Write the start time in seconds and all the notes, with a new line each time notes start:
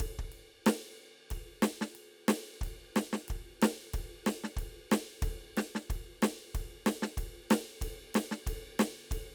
0.00 kick, ride
0.19 kick
0.32 ride
0.66 snare, ride
1.30 kick, ride
1.62 snare, ride
1.81 snare
1.95 ride
2.28 snare, ride
2.61 kick, ride
2.96 snare, ride
3.13 snare
3.28 kick, ride
3.62 snare, ride
3.94 kick, ride
4.26 snare, ride
4.44 snare
4.57 kick, ride
4.91 snare, ride
5.22 kick, ride
5.57 snare, ride
5.75 snare
5.90 kick, ride
6.22 snare, ride
6.54 kick, ride
6.86 snare, ride
7.02 snare
7.17 kick, ride
7.50 snare, ride
7.81 kick, ride
8.14 snare, ride
8.31 snare
8.46 kick, ride
8.79 snare, ride
9.11 kick, ride